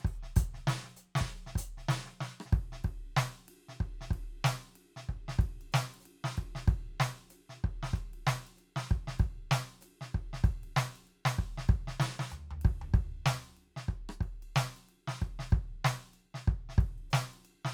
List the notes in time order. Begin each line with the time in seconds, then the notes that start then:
0.01 snare
0.05 kick, open hi-hat
0.16 hi-hat pedal
0.23 snare
0.36 closed hi-hat, kick
0.54 snare
0.59 kick
0.68 snare
0.84 snare
0.97 closed hi-hat
1.16 snare
1.21 kick
1.27 closed hi-hat, hi-hat pedal
1.47 snare
1.56 closed hi-hat, kick
1.78 kick, snare
1.89 snare
2.06 snare
2.21 snare
2.41 cross-stick
2.46 snare
2.53 kick, ride
2.73 snare
2.85 kick, ride
3.17 snare, hi-hat pedal
3.49 ride
3.69 snare
3.81 kick
4.01 snare
4.11 kick, ride
4.45 snare, hi-hat pedal
4.76 ride
4.97 snare
5.09 kick
5.29 snare
5.39 kick, ride
5.61 ride bell
5.73 snare, hi-hat pedal
5.94 ride
6.01 hi-hat pedal
6.06 ride
6.25 snare
6.38 kick, ride
6.56 snare
6.68 kick, ride bell
7.00 snare, hi-hat pedal
7.30 hi-hat pedal, ride
7.50 snare
7.64 kick
7.83 snare
7.94 kick, ride bell
8.14 ride
8.27 snare, hi-hat pedal
8.47 ride bell
8.57 hi-hat pedal, ride
8.77 snare
8.90 kick, ride
9.08 snare
9.20 kick, ride bell
9.52 snare, hi-hat pedal
9.81 hi-hat pedal, ride
10.01 snare
10.15 kick
10.34 snare
10.44 kick, ride bell
10.64 ride
10.77 snare, hi-hat pedal
10.96 ride bell
11.04 hi-hat pedal, ride
11.26 snare
11.39 kick
11.58 snare
11.69 kick, ride bell
11.88 snare
12.00 snare, hi-hat pedal
12.20 snare
12.31 floor tom, hi-hat pedal
12.51 floor tom
12.62 kick, ride
12.82 floor tom
12.94 kick, ride bell
13.26 snare, hi-hat pedal
13.57 ride
13.77 snare
13.89 kick
14.09 cross-stick
14.21 kick, ride bell
14.43 ride bell
14.56 snare, hi-hat pedal
14.77 ride bell
14.89 ride
15.08 snare
15.22 kick, ride
15.40 snare
15.51 kick, ride bell
15.85 snare, hi-hat pedal
16.14 ride bell
16.35 snare
16.48 kick
16.69 snare
16.78 kick, ride
16.98 kick, ride
17.11 snare, hi-hat pedal
17.34 ride
17.45 ride bell
17.65 snare